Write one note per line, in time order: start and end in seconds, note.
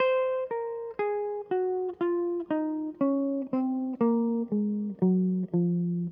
0.00 0.48 C5
0.51 0.94 A#4
0.99 1.44 G#4
1.51 1.94 F#4
2.01 2.44 F4
2.51 2.93 D#4
3.01 3.48 C#4
3.53 3.98 C4
4.01 4.47 A#3
4.52 4.95 G#3
5.03 5.47 F#3
5.54 6.11 F3